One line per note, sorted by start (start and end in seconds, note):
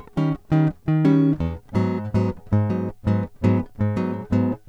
0.09 0.22 F#4
0.19 0.38 D#3
0.19 0.34 G3
0.19 0.39 C#4
0.53 0.74 D#3
0.53 0.72 G3
0.53 0.74 C#4
0.53 0.72 F#4
0.90 1.39 D#3
1.06 1.36 G3
1.06 1.39 C#4
1.06 1.38 F#4
1.42 1.61 E2
1.71 2.02 D#4
1.76 2.12 G#2
1.76 2.03 F#3
1.76 2.04 B3
2.16 2.34 G#2
2.16 2.37 F#3
2.16 2.36 B3
2.16 2.34 D#4
2.54 2.97 G#2
2.71 2.95 F#3
2.71 2.95 B3
2.71 2.94 D#4
3.09 3.30 G#2
3.09 3.32 F#3
3.09 3.31 B3
3.09 3.30 D#4
3.46 3.64 G#2
3.46 3.66 F#3
3.46 3.70 B3
3.46 3.67 D#4
3.83 4.27 G#2
3.98 4.14 F#3
3.98 4.22 B3
3.98 4.17 D#4
4.15 4.28 F#3
4.34 4.60 G#2
4.34 4.59 F#3
4.34 4.59 B3